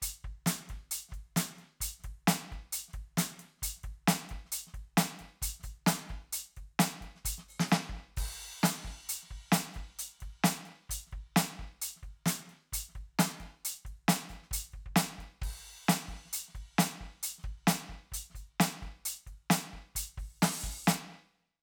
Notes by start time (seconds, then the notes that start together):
0.02 closed hi-hat, kick
0.25 kick
0.46 closed hi-hat, snare
0.69 kick, closed hi-hat
0.91 closed hi-hat
1.09 kick, snare
1.14 closed hi-hat
1.37 closed hi-hat, snare
1.59 closed hi-hat
1.81 closed hi-hat, kick
2.00 snare
2.04 kick, closed hi-hat
2.28 closed hi-hat, snare
2.52 kick, closed hi-hat
2.73 closed hi-hat
2.88 snare
2.94 kick, closed hi-hat
3.18 closed hi-hat, snare
3.40 closed hi-hat
3.58 snare
3.63 closed hi-hat, kick
3.77 snare
3.84 kick, closed hi-hat
4.08 closed hi-hat, snare
4.29 kick, closed hi-hat
4.46 snare
4.52 closed hi-hat
4.67 snare
4.74 kick, closed hi-hat
4.98 closed hi-hat, snare
5.19 kick, closed hi-hat
5.42 closed hi-hat, kick
5.60 closed hi-hat, snare
5.64 kick
5.87 closed hi-hat, snare
6.10 kick, closed hi-hat
6.33 closed hi-hat
6.57 kick, closed hi-hat
6.80 closed hi-hat, snare
7.01 kick, closed hi-hat
7.15 snare
7.25 open hi-hat, kick
7.38 snare
7.49 open hi-hat
7.60 snare
7.68 hi-hat pedal
7.72 snare
7.90 kick
8.17 kick, hi-hat pedal, crash
8.64 closed hi-hat, snare
8.85 kick
9.09 closed hi-hat
9.23 snare
9.31 kick, closed hi-hat
9.52 closed hi-hat, snare
9.74 closed hi-hat, kick
9.99 closed hi-hat
10.19 kick, snare, closed hi-hat
10.44 closed hi-hat, snare
10.66 closed hi-hat
10.90 closed hi-hat, kick
11.07 snare
11.12 kick, closed hi-hat
11.36 closed hi-hat, snare
11.59 kick
11.82 closed hi-hat
11.96 snare
12.03 kick, closed hi-hat
12.26 closed hi-hat, snare
12.50 closed hi-hat
12.73 closed hi-hat, kick
12.89 snare
12.95 kick, closed hi-hat
13.19 closed hi-hat, snare
13.27 snare
13.40 kick, closed hi-hat
13.65 closed hi-hat
13.85 kick, closed hi-hat
14.09 closed hi-hat, snare
14.14 snare
14.29 closed hi-hat, kick
14.43 snare
14.51 closed hi-hat, kick
14.73 kick, closed hi-hat
14.86 kick
14.96 closed hi-hat, snare
15.19 kick, closed hi-hat
15.42 kick, crash
15.61 closed hi-hat
15.89 closed hi-hat, snare
16.09 kick, closed hi-hat
16.26 snare
16.33 closed hi-hat
16.48 snare
16.55 kick, closed hi-hat
16.79 closed hi-hat, snare
17.01 kick
17.20 closed hi-hat, snare
17.39 snare
17.43 kick, closed hi-hat
17.68 closed hi-hat, snare
17.85 snare
17.89 kick
18.12 closed hi-hat, kick
18.30 snare
18.35 closed hi-hat, kick
18.60 closed hi-hat, snare
18.82 kick, closed hi-hat
19.06 closed hi-hat
19.27 kick, closed hi-hat
19.50 closed hi-hat, snare
19.73 kick
19.96 closed hi-hat, kick
20.18 open hi-hat, kick
20.43 open hi-hat, kick, snare
20.64 kick, open hi-hat
20.88 open hi-hat, snare, hi-hat pedal